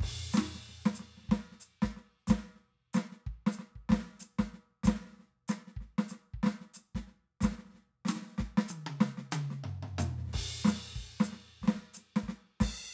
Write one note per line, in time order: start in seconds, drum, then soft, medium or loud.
0.01 kick medium
0.01 snare soft
0.01 ride loud
0.34 snare medium
0.34 hi-hat pedal loud
0.39 snare loud
0.56 snare soft
0.70 snare soft
0.87 snare loud
0.96 hi-hat pedal medium
1.01 snare soft
1.18 snare soft
1.24 snare soft
1.29 kick soft
1.29 snare soft
1.33 snare loud
1.53 snare soft
1.61 hi-hat pedal medium
1.83 kick soft
1.83 snare medium
1.98 snare soft
2.28 kick medium
2.28 snare medium
2.28 hi-hat pedal loud
2.31 snare loud
2.37 snare soft
2.42 snare soft
2.50 snare soft
2.57 snare soft
2.64 snare soft
2.95 snare medium
2.95 hi-hat pedal loud
2.98 snare medium
3.13 snare soft
3.28 kick soft
3.28 snare soft
3.48 snare loud
3.53 hi-hat pedal medium
3.60 snare soft
3.77 kick soft
3.90 kick medium
3.90 snare medium
3.93 snare loud
3.99 snare soft
4.03 snare soft
4.07 snare soft
4.11 snare soft
4.16 snare soft
4.21 snare soft
4.21 hi-hat pedal loud
4.40 kick soft
4.40 snare loud
4.55 snare soft
4.85 kick medium
4.85 snare medium
4.85 hi-hat pedal loud
4.89 snare loud
4.97 snare soft
5.01 snare soft
5.06 snare soft
5.10 snare soft
5.13 snare soft
5.17 snare soft
5.20 snare soft
5.49 cross-stick medium
5.49 snare medium
5.49 hi-hat pedal loud
5.59 snare soft
5.68 snare soft
5.78 kick soft
5.82 snare soft
5.99 snare medium
6.10 snare soft
6.10 hi-hat pedal medium
6.35 kick soft
6.44 snare medium
6.47 snare loud
6.62 snare soft
6.75 snare soft
6.75 hi-hat pedal loud
6.96 kick soft
6.96 snare medium
7.08 snare soft
7.42 kick medium
7.42 snare medium
7.42 hi-hat pedal loud
7.45 snare loud
7.52 snare soft
7.60 snare soft
7.66 snare soft
7.71 snare soft
7.75 kick soft
7.75 snare soft
8.06 snare medium
8.06 hi-hat pedal loud
8.10 snare loud
8.17 snare soft
8.23 snare soft
8.28 snare soft
8.33 snare soft
8.39 kick medium
8.39 snare medium
8.59 snare loud
8.69 hi-hat pedal loud
8.69 high tom medium
8.88 high tom medium
9.02 snare loud
9.19 snare soft
9.33 hi-hat pedal loud
9.33 high tom loud
9.52 snare soft
9.65 floor tom medium
9.84 floor tom medium
10.00 hi-hat pedal loud
10.00 floor tom loud
10.19 snare soft
10.24 kick soft
10.24 snare soft
10.28 snare soft
10.31 snare soft
10.31 ride loud
10.36 kick medium
10.66 snare loud
10.66 hi-hat pedal loud
10.69 snare loud
10.75 snare soft
10.83 snare soft
10.85 snare soft
10.97 kick soft
10.97 snare soft
11.21 snare loud
11.21 hi-hat pedal loud
11.33 snare soft
11.63 kick soft
11.63 snare medium
11.69 snare loud
11.73 kick soft
11.73 snare soft
11.79 snare soft
11.85 snare soft
11.95 snare soft
11.95 hi-hat pedal loud
12.17 snare medium
12.24 kick soft
12.30 snare medium
12.62 kick medium
12.62 snare medium
12.62 hi-hat pedal loud
12.62 crash loud